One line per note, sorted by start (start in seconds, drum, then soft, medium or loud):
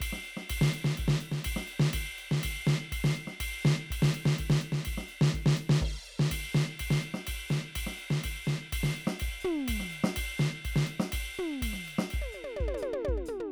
0.01 kick soft
0.01 ride bell loud
0.07 kick soft
0.13 snare soft
0.22 hi-hat pedal medium
0.22 ride soft
0.37 snare soft
0.50 kick soft
0.50 ride bell loud
0.57 kick soft
0.62 snare loud
0.72 hi-hat pedal medium
0.72 ride medium
0.85 snare loud
0.98 kick soft
0.98 ride bell medium
1.05 kick soft
1.05 snare loud
1.20 hi-hat pedal medium
1.20 ride medium
1.32 snare medium
1.45 kick soft
1.45 ride bell loud
1.53 kick soft
1.57 snare medium
1.68 hi-hat pedal medium
1.68 ride medium
1.80 snare loud
1.94 kick soft
1.94 ride bell loud
2.01 kick soft
2.17 hi-hat pedal medium
2.17 ride medium
2.32 snare loud
2.44 kick soft
2.44 ride bell loud
2.51 kick soft
2.64 snare loud
2.64 hi-hat pedal medium
2.92 kick soft
2.92 ride bell loud
3.05 snare loud
3.12 hi-hat pedal medium
3.12 ride soft
3.28 snare soft
3.41 kick soft
3.41 ride bell loud
3.46 kick soft
3.61 hi-hat pedal medium
3.65 snare loud
3.91 kick soft
3.91 ride bell loud
4.03 snare loud
4.11 hi-hat pedal medium
4.11 ride medium
4.26 snare loud
4.39 kick soft
4.39 ride bell medium
4.46 kick soft
4.50 snare loud
4.60 hi-hat pedal medium
4.60 ride medium
4.73 snare medium
4.85 kick soft
4.85 ride bell loud
4.93 kick soft
4.98 snare soft
5.08 hi-hat pedal medium
5.08 ride soft
5.22 snare loud
5.34 kick soft
5.34 ride medium
5.46 snare loud
5.55 hi-hat pedal medium
5.55 ride medium
5.70 snare loud
5.82 kick soft
5.82 crash medium
5.88 kick soft
6.04 hi-hat pedal medium
6.20 snare loud
6.32 kick soft
6.32 ride bell loud
6.38 kick soft
6.52 snare loud
6.52 hi-hat pedal medium
6.80 kick soft
6.80 ride bell loud
6.86 kick soft
6.91 snare loud
7.00 hi-hat pedal medium
7.00 ride soft
7.15 snare medium
7.27 kick soft
7.27 ride bell loud
7.48 snare medium
7.48 hi-hat pedal medium
7.58 snare soft
7.76 kick soft
7.76 ride bell loud
7.82 kick soft
7.87 snare soft
7.96 hi-hat pedal medium
7.96 ride soft
8.11 snare medium
8.24 kick soft
8.24 ride bell loud
8.44 snare medium
8.44 hi-hat pedal medium
8.67 hi-hat pedal soft
8.73 kick soft
8.73 ride bell loud
8.79 kick soft
8.84 snare medium
8.93 hi-hat pedal medium
8.97 ride medium
9.08 snare medium
9.15 hi-hat pedal soft
9.20 kick soft
9.20 ride bell loud
9.29 kick soft
9.41 hi-hat pedal medium
9.41 floor tom loud
9.68 kick soft
9.68 ride bell loud
9.75 kick soft
9.80 snare soft
9.90 hi-hat pedal medium
9.90 ride soft
10.04 snare medium
10.13 hi-hat pedal soft
10.13 ride bell loud
10.18 kick soft
10.38 snare loud
10.38 hi-hat pedal medium
10.60 hi-hat pedal soft
10.65 kick soft
10.65 ride bell medium
10.71 kick soft
10.76 snare loud
10.86 hi-hat pedal medium
10.86 ride soft
11.00 snare medium
11.13 kick soft
11.13 ride bell loud
11.19 kick soft
11.34 hi-hat pedal medium
11.39 floor tom loud
11.62 kick soft
11.62 ride bell loud
11.69 kick soft
11.74 snare soft
11.84 hi-hat pedal medium
11.84 ride medium
11.99 snare medium
12.11 kick soft
12.11 ride medium
12.20 kick soft
12.20 high tom medium
12.33 hi-hat pedal medium
12.33 high tom medium
12.44 high tom medium
12.57 high tom medium
12.61 kick soft
12.68 kick soft
12.68 high tom medium
12.74 hi-hat pedal medium
12.74 high tom medium
12.83 high tom loud
12.93 high tom loud
13.05 high tom loud
13.09 kick soft
13.16 kick soft
13.16 high tom medium
13.26 hi-hat pedal medium
13.26 mid tom medium
13.40 mid tom medium